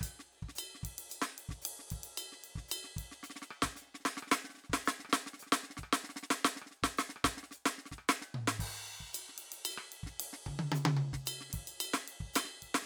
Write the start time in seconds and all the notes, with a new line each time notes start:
0.01 kick, hi-hat pedal, ride bell
0.19 snare
0.32 ride
0.42 kick
0.49 snare
0.55 hi-hat pedal, ride bell
0.75 snare
0.81 kick, snare
0.85 snare, ride
0.88 snare
0.94 snare
0.98 ride
1.09 hi-hat pedal, ride bell
1.22 snare
1.38 ride
1.49 kick, snare
1.62 hi-hat pedal, ride
1.79 snare
1.88 kick, cross-stick, ride
2.03 ride
2.17 hi-hat pedal, ride bell
2.32 snare
2.44 ride
2.56 kick, snare
2.63 kick
2.68 hi-hat pedal, ride bell
2.84 snare
2.96 kick, ride
3.02 kick
3.11 snare
3.23 snare, hi-hat pedal
3.30 snare
3.36 snare
3.42 snare
3.51 cross-stick
3.62 kick, snare
3.67 cross-stick
3.76 snare, hi-hat pedal
3.82 snare
3.87 snare
3.94 snare
4.00 snare
4.05 snare
4.17 snare
4.23 cross-stick
4.31 snare, hi-hat pedal
4.44 snare
4.50 snare
4.57 snare
4.64 snare
4.70 kick, snare
4.73 snare
4.85 snare, hi-hat pedal
5.00 snare
5.05 cross-stick
5.09 snare
5.13 snare
5.26 snare
5.33 snare
5.39 cross-stick, hi-hat pedal
5.52 snare
5.63 snare
5.70 snare
5.77 kick, snare
5.83 cross-stick
5.93 snare, hi-hat pedal
6.04 snare
6.09 snare
6.16 snare
6.23 snare
6.30 snare
6.45 snare, hi-hat pedal
6.56 snare
6.62 cross-stick
6.66 snare
6.71 snare
6.83 kick, snare
6.97 snare, hi-hat pedal
7.09 snare
7.16 cross-stick
7.24 kick, snare
7.37 snare
7.43 snare
7.51 snare, hi-hat pedal
7.66 snare
7.78 snare
7.86 snare
7.92 kick, snare
7.98 cross-stick
8.08 snare, hi-hat pedal
8.22 snare
8.34 mid tom
8.48 snare
8.59 kick, hi-hat pedal, crash
8.70 kick
9.00 kick
9.13 hi-hat pedal, ride bell
9.29 snare
9.36 cross-stick, ride
9.52 ride
9.65 ride bell
9.70 hi-hat pedal
9.78 cross-stick
9.92 ride
10.03 kick, snare
10.08 kick
10.20 hi-hat pedal, ride
10.33 snare
10.46 kick, high tom
10.59 high tom
10.72 hi-hat pedal, high tom
10.85 high tom
10.97 high tom
11.13 kick, snare
11.26 hi-hat pedal, ride bell
11.41 snare
11.50 snare, ride
11.54 kick, snare
11.60 kick, snare
11.67 snare, ride bell
11.80 hi-hat pedal, ride bell
11.94 snare
12.08 ride
12.20 kick
12.26 kick
12.34 snare, hi-hat pedal, ride bell
12.45 snare
12.62 kick, ride
12.74 snare
12.82 snare